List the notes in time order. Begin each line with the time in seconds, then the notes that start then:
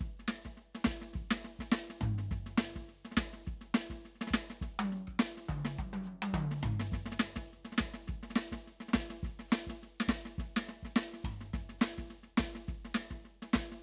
0.01 kick, snare
0.08 kick
0.20 snare
0.28 snare, hi-hat pedal
0.45 kick, snare
0.58 snare
0.75 snare
0.85 kick, snare, hi-hat pedal
0.93 kick
1.02 snare
1.14 kick, snare
1.22 kick
1.31 snare
1.42 snare, hi-hat pedal
1.60 kick, snare
1.72 snare
1.90 snare
2.00 kick, floor tom, hi-hat pedal
2.09 kick
2.12 kick
2.19 snare
2.31 kick, snare
2.38 kick
2.43 kick, snare
2.58 snare, hi-hat pedal
2.76 kick, snare
2.82 kick
2.89 snare
3.05 snare
3.12 snare
3.16 kick, snare, hi-hat pedal
3.24 kick
3.34 snare
3.47 kick, snare
3.55 kick
3.62 snare
3.75 snare, hi-hat pedal
3.91 kick, snare
4.06 snare
4.16 snare
4.22 snare
4.28 kick, snare, hi-hat pedal
4.34 snare
4.50 snare
4.62 kick, snare
4.69 kick
4.80 high tom
4.86 hi-hat pedal
4.92 snare
5.08 kick, cross-stick
5.20 snare
5.38 snare
5.48 kick, hi-hat pedal, mid tom
5.59 kick
5.65 snare
5.79 kick, high tom
5.86 kick
5.94 high tom
6.04 hi-hat pedal, high tom
6.23 high tom
6.27 hi-hat pedal
6.34 kick, mid tom
6.52 snare
6.61 kick, hi-hat pedal, floor tom
6.80 snare
6.93 kick, snare
6.99 kick
7.03 kick, snare
7.12 snare
7.19 snare, hi-hat pedal
7.36 kick, snare
7.53 snare
7.65 snare
7.73 snare
7.77 kick, snare, hi-hat pedal
7.87 kick
7.94 snare
8.08 kick, snare
8.16 kick
8.23 snare
8.31 snare
8.36 snare, hi-hat pedal
8.52 kick, snare
8.68 snare
8.81 snare
8.89 snare, hi-hat pedal
8.94 kick, snare
9.04 kick
9.10 snare
9.24 kick, snare
9.30 kick
9.40 snare
9.49 snare, hi-hat pedal
9.67 kick, snare
9.83 snare
10.00 snare
10.08 kick, snare, hi-hat pedal
10.15 kick
10.26 snare
10.39 kick, snare
10.46 kick
10.57 snare
10.65 hi-hat pedal
10.69 snare
10.83 kick, snare
10.96 snare
11.14 snare
11.23 kick, hi-hat pedal, floor tom
11.31 kick
11.34 kick
11.41 snare
11.54 kick, snare
11.61 kick
11.70 snare
11.79 snare, hi-hat pedal
11.98 kick, snare
12.11 snare
12.24 snare
12.38 kick, snare, hi-hat pedal
12.46 kick
12.55 snare
12.69 kick, snare
12.75 kick
12.85 snare
12.95 snare, hi-hat pedal
13.11 kick, snare
13.25 snare
13.43 snare
13.54 kick, snare, hi-hat pedal
13.72 snare